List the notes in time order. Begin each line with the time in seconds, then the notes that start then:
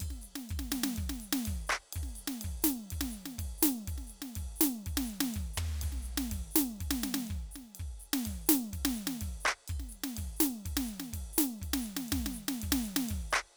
0.01 kick, ride bell
0.08 kick, snare
0.22 hi-hat pedal, ride
0.36 snare
0.50 kick, ride bell
0.58 kick, snare
0.72 snare, hi-hat pedal
0.84 snare
0.97 kick, ride
1.05 kick
1.10 snare
1.21 hi-hat pedal, ride
1.33 snare
1.46 kick, ride
1.54 kick
1.68 percussion, hi-hat pedal
1.93 kick, ride
2.03 kick, snare
2.16 hi-hat pedal, ride
2.28 snare
2.42 kick, ride
2.51 kick
2.63 snare, hi-hat pedal
2.91 kick, ride
2.99 kick, snare
3.11 hi-hat pedal
3.15 ride
3.26 snare
3.39 kick, ride
3.45 kick
3.59 hi-hat pedal
3.63 snare
3.88 kick, ride
3.94 kick
3.98 snare
4.07 hi-hat pedal, ride
4.22 snare
4.36 kick, ride
4.43 kick
4.56 hi-hat pedal
4.61 snare
4.87 kick, ride
4.93 kick
4.98 snare
5.05 hi-hat pedal
5.11 ride
5.21 snare
5.35 kick, ride
5.43 kick
5.54 floor tom, hi-hat pedal
5.82 kick, ride
5.90 kick, snare
6.03 hi-hat pedal, ride
6.18 snare
6.32 kick, ride
6.38 kick
6.52 hi-hat pedal
6.56 snare
6.81 kick, ride
6.87 kick
6.91 snare
7.02 snare, hi-hat pedal
7.15 snare
7.28 kick, ride
7.37 kick
7.52 hi-hat pedal
7.56 snare
7.76 ride
7.80 kick
8.00 hi-hat pedal, ride
8.14 snare
8.26 kick, ride
8.33 kick
8.47 snare, hi-hat pedal
8.74 kick, ride
8.79 kick
8.86 snare
8.94 hi-hat pedal
8.99 ride
9.08 snare
9.22 kick, ride
9.28 kick
9.41 hi-hat pedal
9.46 percussion
9.68 kick, ride bell
9.76 kick
9.80 snare
9.89 hi-hat pedal, ride
10.04 snare
10.17 kick, ride
10.24 kick
10.37 snare, hi-hat pedal
10.66 kick, ride
10.72 kick
10.78 snare
10.85 hi-hat pedal
10.89 ride
11.00 snare
11.14 kick, ride
11.19 kick
11.34 hi-hat pedal
11.39 snare
11.62 kick, ride
11.74 snare
11.82 hi-hat pedal
11.87 ride
11.97 snare
12.09 kick, snare, ride
12.19 kick
12.27 snare
12.34 hi-hat pedal
12.49 snare
12.62 kick, ride
12.70 kick, snare
12.83 hi-hat pedal, ride
12.97 snare
13.09 kick, ride
13.18 kick
13.31 percussion, hi-hat pedal